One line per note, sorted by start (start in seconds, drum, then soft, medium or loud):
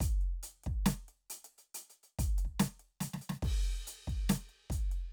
0.01 closed hi-hat loud
0.01 kick medium
0.22 closed hi-hat soft
0.43 closed hi-hat loud
0.64 kick medium
0.64 closed hi-hat soft
0.86 closed hi-hat loud
0.86 snare loud
1.09 closed hi-hat soft
1.30 closed hi-hat loud
1.45 closed hi-hat medium
1.59 closed hi-hat medium
1.75 closed hi-hat loud
1.90 closed hi-hat medium
2.04 closed hi-hat soft
2.19 closed hi-hat loud
2.19 kick medium
2.39 closed hi-hat medium
2.45 kick soft
2.60 closed hi-hat loud
2.60 snare loud
2.80 closed hi-hat soft
3.01 closed hi-hat loud
3.01 snare medium
3.14 snare medium
3.22 closed hi-hat medium
3.30 snare medium
3.43 kick medium
3.43 crash medium
3.63 closed hi-hat soft
3.88 closed hi-hat loud
4.08 kick soft
4.08 closed hi-hat soft
4.30 closed hi-hat loud
4.30 snare loud
4.50 closed hi-hat soft
4.70 closed hi-hat medium
4.70 kick medium
4.92 closed hi-hat soft